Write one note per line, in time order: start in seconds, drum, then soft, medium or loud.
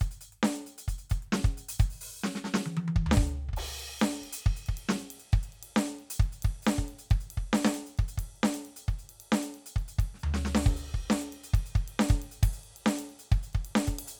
0.01 closed hi-hat medium
0.01 kick loud
0.12 closed hi-hat soft
0.21 closed hi-hat medium
0.33 closed hi-hat soft
0.44 snare loud
0.56 closed hi-hat medium
0.67 closed hi-hat medium
0.79 closed hi-hat medium
0.89 closed hi-hat medium
0.89 kick medium
0.99 closed hi-hat soft
1.10 closed hi-hat medium
1.10 kick loud
1.23 closed hi-hat soft
1.33 snare loud
1.45 kick loud
1.45 closed hi-hat soft
1.58 closed hi-hat medium
1.69 closed hi-hat loud
1.80 closed hi-hat medium
1.80 kick loud
1.91 open hi-hat medium
2.02 open hi-hat loud
2.21 snare loud
2.21 hi-hat pedal soft
2.36 snare medium
2.45 snare medium
2.55 snare loud
2.66 high tom loud
2.77 high tom loud
2.89 high tom medium
2.97 kick loud
3.07 floor tom loud
3.12 snare loud
3.18 kick loud
3.26 hi-hat pedal soft
3.49 kick soft
3.54 kick medium
3.54 crash loud
3.80 ride medium
3.99 snare loud
3.99 hi-hat pedal medium
4.22 kick soft
4.22 ride medium
4.33 closed hi-hat loud
4.45 kick loud
4.45 ride soft
4.57 closed hi-hat medium
4.67 kick medium
4.67 ride medium
4.78 ride medium
4.89 snare loud
5.00 ride soft
5.11 ride medium
5.20 closed hi-hat medium
5.33 kick loud
5.33 ride soft
5.44 closed hi-hat medium
5.53 ride soft
5.64 ride medium
5.77 snare loud
5.99 ride soft
6.11 closed hi-hat loud
6.20 kick loud
6.20 ride soft
6.33 closed hi-hat medium
6.43 kick loud
6.43 ride medium
6.63 hi-hat pedal medium
6.67 snare loud
6.67 ride medium
6.79 kick medium
6.89 ride medium
6.99 closed hi-hat medium
7.11 kick loud
7.11 ride medium
7.21 closed hi-hat soft
7.31 ride medium
7.38 kick medium
7.54 snare loud
7.65 snare loud
7.75 ride medium
7.87 closed hi-hat medium
7.99 kick loud
7.99 ride soft
8.09 closed hi-hat medium
8.18 kick medium
8.18 ride medium
8.36 ride soft
8.44 snare loud
8.55 ride medium
8.66 ride medium
8.77 closed hi-hat medium
8.89 kick medium
8.89 ride soft
8.99 closed hi-hat soft
9.10 ride medium
9.21 ride medium
9.33 snare loud
9.44 ride medium
9.55 ride soft
9.67 closed hi-hat medium
9.77 kick medium
9.77 ride soft
9.89 closed hi-hat medium
9.99 kick loud
9.99 ride medium
10.15 snare soft
10.20 hi-hat pedal soft
10.24 floor tom loud
10.35 snare medium
10.46 snare medium
10.55 snare loud
10.67 kick loud
10.67 crash medium
10.77 closed hi-hat medium
10.89 ride soft
10.95 kick medium
11.01 ride soft
11.11 snare loud
11.22 ride medium
11.33 ride medium
11.44 closed hi-hat medium
11.54 kick loud
11.54 ride medium
11.66 closed hi-hat soft
11.76 kick loud
11.76 ride soft
11.89 ride medium
12.00 snare loud
12.10 kick loud
12.10 ride medium
12.22 ride medium
12.32 closed hi-hat medium
12.43 kick loud
12.43 ride loud
12.54 closed hi-hat medium
12.64 ride soft
12.77 ride medium
12.87 snare loud
12.99 ride medium
13.10 ride soft
13.20 closed hi-hat medium
13.32 kick loud
13.32 ride soft
13.44 closed hi-hat medium
13.54 kick medium
13.54 ride soft
13.65 ride medium
13.76 snare loud
13.88 kick medium
13.88 ride medium
13.99 ride loud
14.08 closed hi-hat loud